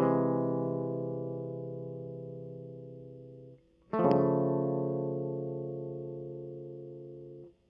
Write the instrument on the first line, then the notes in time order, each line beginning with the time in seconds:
electric guitar
0.00 C3 E3 G#3
3.94 A3
4.00 F3
4.06 C#3